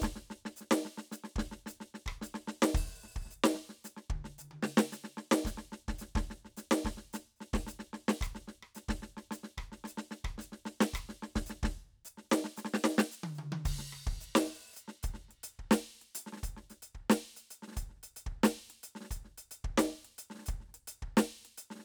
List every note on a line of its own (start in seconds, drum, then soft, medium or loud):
0.01 kick medium
0.01 snare medium
0.01 hi-hat pedal medium
0.15 snare soft
0.30 snare soft
0.45 snare soft
0.56 hi-hat pedal medium
0.60 snare soft
0.71 snare loud
0.85 snare soft
0.97 snare soft
1.11 snare soft
1.11 hi-hat pedal medium
1.24 snare soft
1.36 kick medium
1.36 snare medium
1.51 snare soft
1.66 snare soft
1.66 hi-hat pedal medium
1.80 snare soft
1.94 snare soft
2.06 kick medium
2.06 cross-stick medium
2.21 snare soft
2.21 hi-hat pedal medium
2.34 snare medium
2.47 snare medium
2.62 snare loud
2.74 open hi-hat medium
2.74 kick medium
3.03 snare soft
3.16 kick medium
3.25 snare soft
3.28 snare soft
3.28 hi-hat pedal medium
3.44 snare loud
3.54 snare soft
3.69 snare soft
3.84 snare soft
3.84 hi-hat pedal medium
3.96 snare soft
4.10 kick medium
4.10 high tom soft
4.24 snare soft
4.38 hi-hat pedal medium
4.38 high tom soft
4.51 high tom soft
4.62 snare medium
4.77 snare loud
4.92 snare soft
4.92 hi-hat pedal medium
5.04 snare soft
5.17 snare soft
5.31 snare loud
5.45 kick medium
5.45 snare medium
5.45 hi-hat pedal medium
5.57 snare soft
5.72 snare soft
5.88 kick medium
5.88 snare medium
5.98 snare soft
5.98 hi-hat pedal medium
6.15 kick medium
6.15 snare medium
6.30 snare soft
6.45 snare soft
6.57 snare soft
6.57 hi-hat pedal medium
6.71 snare loud
6.84 kick medium
6.84 snare medium
6.97 snare soft
7.13 snare medium
7.13 hi-hat pedal medium
7.36 hi-hat pedal soft
7.40 snare soft
7.53 kick medium
7.53 snare medium
7.66 snare soft
7.66 hi-hat pedal medium
7.79 snare soft
7.93 snare soft
8.08 snare loud
8.21 kick medium
8.21 cross-stick medium
8.21 hi-hat pedal medium
8.35 snare soft
8.47 snare soft
8.62 cross-stick medium
8.75 snare soft
8.75 hi-hat pedal medium
8.88 kick medium
8.88 snare medium
9.02 snare soft
9.17 snare soft
9.31 snare medium
9.31 hi-hat pedal medium
9.43 snare soft
9.57 kick soft
9.57 cross-stick medium
9.72 snare soft
9.84 snare soft
9.84 hi-hat pedal medium
9.97 snare medium
10.11 snare soft
10.24 kick medium
10.24 cross-stick medium
10.38 snare soft
10.38 hi-hat pedal medium
10.52 snare soft
10.64 snare medium
10.64 hi-hat pedal soft
10.80 snare loud
10.93 kick medium
10.93 cross-stick medium
10.93 hi-hat pedal medium
11.09 snare soft
11.22 snare soft
11.35 kick medium
11.35 snare medium
11.46 snare soft
11.46 hi-hat pedal medium
11.63 kick medium
11.63 snare medium
12.05 hi-hat pedal medium
12.17 snare soft
12.24 snare soft
12.29 snare loud
12.29 hi-hat pedal soft
12.44 snare soft
12.56 snare soft
12.56 hi-hat pedal medium
12.65 snare medium
12.74 snare medium
12.84 snare loud
12.98 snare loud
13.11 hi-hat pedal medium
13.23 high tom medium
13.35 hi-hat pedal soft
13.35 high tom medium
13.52 high tom loud
13.65 kick medium
13.65 hi-hat pedal medium
13.65 crash medium
13.78 snare soft
13.92 cross-stick medium
14.06 kick medium
14.06 closed hi-hat soft
14.20 hi-hat pedal medium
14.35 open hi-hat medium
14.35 snare loud
14.63 open hi-hat soft
14.73 closed hi-hat medium
14.73 hi-hat pedal medium
14.88 snare soft
15.03 closed hi-hat medium
15.03 kick medium
15.14 snare soft
15.28 snare soft
15.28 closed hi-hat soft
15.43 closed hi-hat medium
15.59 kick soft
15.71 closed hi-hat medium
15.71 snare loud
16.01 closed hi-hat soft
16.15 closed hi-hat medium
16.26 snare soft
16.32 snare soft
16.43 closed hi-hat medium
16.43 kick medium
16.56 snare soft
16.70 closed hi-hat soft
16.70 snare soft
16.82 closed hi-hat medium
16.94 kick soft
17.10 closed hi-hat medium
17.10 snare loud
17.23 snare soft
17.36 closed hi-hat soft
17.50 closed hi-hat medium
17.62 snare soft
17.67 snare soft
17.72 snare soft
17.75 closed hi-hat medium
17.75 kick medium
17.75 snare soft
17.89 snare soft
17.96 snare soft
18.03 closed hi-hat medium
18.16 closed hi-hat medium
18.26 kick medium
18.43 closed hi-hat medium
18.43 snare loud
18.57 snare soft
18.70 closed hi-hat soft
18.83 closed hi-hat medium
18.95 snare soft
19.00 snare soft
19.04 snare soft
19.10 closed hi-hat medium
19.10 kick medium
19.24 snare soft
19.37 closed hi-hat medium
19.51 closed hi-hat medium
19.64 kick medium
19.77 closed hi-hat medium
19.77 snare loud
20.04 closed hi-hat soft
20.18 closed hi-hat medium
20.30 snare soft
20.35 snare soft
20.38 snare soft
20.41 snare soft
20.46 closed hi-hat medium
20.46 kick medium
20.60 snare soft
20.65 snare soft
20.68 snare soft
20.74 closed hi-hat medium
20.87 closed hi-hat medium
21.02 kick soft
21.17 closed hi-hat medium
21.17 snare loud
21.45 closed hi-hat soft
21.57 closed hi-hat medium
21.70 snare soft
21.75 snare soft
21.79 snare soft